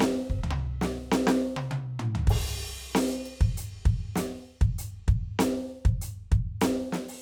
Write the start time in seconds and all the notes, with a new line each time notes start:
0.01 snare
0.30 kick
0.39 kick
0.44 floor tom
0.51 high tom
0.82 snare
1.12 snare
1.27 snare
1.57 high tom
1.71 high tom
2.00 mid tom
2.15 floor tom
2.27 kick, crash
2.95 open hi-hat, snare
3.26 closed hi-hat
3.41 kick
3.58 closed hi-hat
3.86 kick
4.16 closed hi-hat, snare
4.62 kick
4.79 closed hi-hat
5.08 kick
5.39 closed hi-hat, snare
5.85 kick
6.02 closed hi-hat
6.32 kick
6.61 closed hi-hat, snare
6.93 snare
7.09 open hi-hat